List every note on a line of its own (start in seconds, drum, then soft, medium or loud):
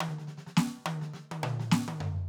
0.00 high tom loud
0.08 snare soft
0.18 snare soft
0.27 snare soft
0.47 snare soft
0.57 snare loud
0.78 snare soft
0.86 high tom loud
1.01 snare soft
1.13 snare soft
1.31 open hi-hat soft
1.31 high tom loud
1.43 mid tom loud
1.59 snare medium
1.72 snare loud
1.88 high tom loud
2.00 floor tom loud